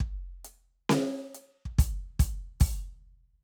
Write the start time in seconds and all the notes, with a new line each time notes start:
0.01 kick
0.46 closed hi-hat
0.90 snare
1.36 closed hi-hat
1.66 kick
1.79 closed hi-hat, kick
2.20 closed hi-hat, kick
2.61 open hi-hat, kick